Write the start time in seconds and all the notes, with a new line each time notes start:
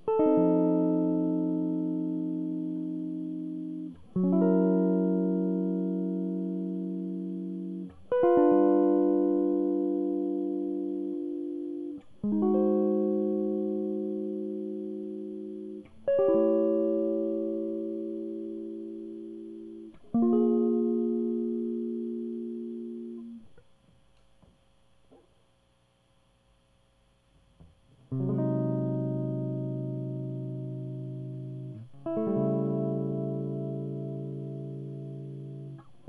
0.08 A4
0.19 D#4
0.26 C4
0.31 F3
4.16 F#3
4.24 C#4
4.33 E4
4.42 A#4
8.12 B4
8.23 F4
8.37 D4
12.24 G#3
12.32 D#4
12.42 F#4
12.54 C5
16.08 C#5
16.19 G4
16.28 E4
20.15 A#3
20.22 F4
20.33 G#4
28.13 C3
28.20 F#3
28.29 G#3
28.38 D#4
32.06 E4
32.17 A3
32.27 G3
32.37 C#3